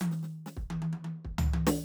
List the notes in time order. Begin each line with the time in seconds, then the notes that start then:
0.00 hi-hat pedal, high tom
0.11 snare
0.23 snare
0.46 snare
0.57 kick
0.70 high tom
0.82 high tom
0.93 high tom
1.04 high tom
1.25 kick
1.38 floor tom
1.53 high tom
1.67 snare